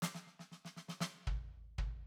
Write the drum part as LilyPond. \new DrumStaff \drummode { \time 4/4 \tempo 4 = 116 <sn hhp>16 sn16 sn16 sn16 sn16 sn16 sn16 sn16 sn8 <bd tomfh>8 r8 <bd tomfh>8 | }